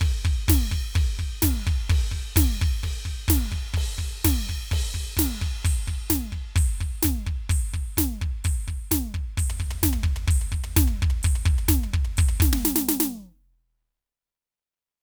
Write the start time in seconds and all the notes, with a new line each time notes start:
0.01 kick, crash
0.25 kick
0.48 kick, snare, crash
0.71 kick
0.94 kick, crash
1.19 kick
1.42 kick, snare, crash
1.67 kick
1.90 kick, crash
2.12 kick
2.36 kick, snare, crash
2.62 kick
2.83 kick, crash
3.05 kick
3.28 kick, snare, crash
3.52 kick
3.74 kick, crash
3.98 kick
4.25 kick, snare, crash
4.49 kick
4.71 kick, crash
4.94 kick
5.17 kick, snare, crash
5.42 kick
5.65 open hi-hat, kick
5.88 kick
6.10 kick, snare
6.32 kick
6.56 open hi-hat, kick
6.81 kick
7.03 kick, snare
7.27 kick
7.50 open hi-hat, kick
7.74 kick
7.97 kick, snare
8.21 kick
8.44 open hi-hat, kick
8.68 kick
8.91 kick, snare
9.14 kick
9.38 open hi-hat, kick
9.50 floor tom
9.60 kick
9.71 floor tom
9.83 kick, snare
9.93 floor tom
10.03 kick
10.16 floor tom
10.21 kick
10.28 open hi-hat, kick
10.41 floor tom
10.52 kick
10.64 floor tom
10.76 kick, snare
10.88 floor tom
11.02 kick
11.10 floor tom
11.23 open hi-hat, kick
11.35 floor tom
11.46 kick
11.58 floor tom
11.68 kick, snare
11.83 floor tom
11.94 kick
12.05 floor tom
12.17 open hi-hat, kick
12.29 floor tom
12.40 kick, snare
12.53 snare
12.65 snare
12.76 snare
12.89 snare
13.00 snare, hi-hat pedal